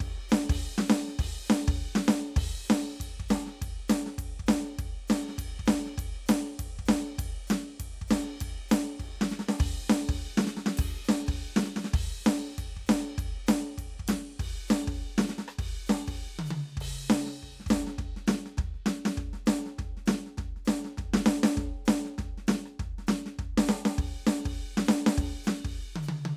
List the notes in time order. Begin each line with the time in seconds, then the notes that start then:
0.01 kick, ride
0.30 snare, hi-hat pedal
0.50 kick, crash
0.79 snare
0.88 snare, hi-hat pedal
1.08 snare
1.19 kick, crash
1.46 hi-hat pedal
1.51 snare
1.68 kick, crash
1.96 snare
2.04 hi-hat pedal
2.09 snare
2.37 kick, crash
2.65 hi-hat pedal
2.70 snare, ride
2.89 snare
3.01 kick, ride
3.20 kick
3.29 snare, hi-hat pedal, ride
3.47 snare
3.62 kick, ride
3.89 snare, hi-hat pedal, ride
4.07 snare
4.19 kick, ride
4.40 kick
4.47 snare, hi-hat pedal, ride
4.64 snare
4.79 kick, ride
5.08 snare, hi-hat pedal, ride
5.29 snare
5.39 kick, ride
5.60 kick
5.66 snare, hi-hat pedal, ride
5.86 snare
5.98 kick, ride
6.27 snare, hi-hat pedal, ride
6.46 cross-stick
6.60 kick, ride
6.79 kick
6.86 snare, hi-hat pedal, ride
7.19 kick, ride
7.48 snare, hi-hat pedal, ride
7.80 kick, ride
8.02 kick
8.08 snare, hi-hat pedal, ride
8.41 kick, ride
8.69 snare, hi-hat pedal, ride
9.00 kick, ride
9.22 snare
9.30 snare, hi-hat pedal
9.40 snare
9.49 snare
9.60 kick, crash
9.90 snare, hi-hat pedal
10.09 kick, crash
10.38 snare
10.47 snare, hi-hat pedal
10.57 snare
10.67 snare
10.78 kick, crash
11.05 hi-hat pedal
11.09 snare
11.28 kick, crash
11.57 snare
11.64 snare, hi-hat pedal
11.77 snare
11.85 snare
11.94 kick, crash
12.25 snare, hi-hat pedal, ride
12.41 snare
12.59 kick, ride
12.77 kick
12.87 snare, hi-hat pedal, ride
13.00 cross-stick
13.19 kick, ride
13.47 snare, hi-hat pedal, ride
13.78 kick, ride
14.00 kick
14.08 snare, hi-hat pedal, ride
14.13 kick
14.40 kick, crash
14.69 snare, hi-hat pedal
14.88 kick, crash
15.19 snare
15.28 snare, hi-hat pedal
15.39 snare
15.49 cross-stick
15.59 kick, crash
15.87 snare, hi-hat pedal
16.08 kick, crash
16.39 high tom
16.47 hi-hat pedal
16.51 high tom
16.78 kick, crash
17.11 snare, hi-hat pedal
17.26 snare
17.43 kick
17.61 snare
17.67 kick, hi-hat pedal
17.71 snare
17.87 snare
17.99 kick, snare
18.17 snare
18.28 snare, hi-hat pedal
18.46 snare
18.58 kick, snare
18.75 snare
18.87 snare, hi-hat pedal
19.06 snare
19.18 kick, snare
19.34 snare
19.47 snare, hi-hat pedal
19.66 snare
19.79 kick, snare
19.98 snare
20.06 snare, hi-hat pedal
20.27 snare
20.38 kick, snare
20.57 snare
20.66 snare, hi-hat pedal
20.85 snare
20.98 kick, snare
21.14 snare
21.26 snare, hi-hat pedal
21.44 snare
21.58 kick, snare
21.86 snare, hi-hat pedal
22.05 snare
22.19 kick, snare
22.38 snare
22.48 snare, hi-hat pedal
22.66 cross-stick
22.80 kick, snare
22.99 snare
23.08 hi-hat pedal
23.27 snare
23.39 kick, snare
23.58 snare
23.67 snare, hi-hat pedal
23.86 snare
23.99 kick, crash
24.27 snare, hi-hat pedal
24.46 kick, crash
24.78 snare
24.86 snare, hi-hat pedal
25.07 snare
25.18 kick, crash
25.44 snare, hi-hat pedal
25.65 kick, crash
25.96 high tom
26.03 hi-hat pedal
26.09 high tom
26.26 high tom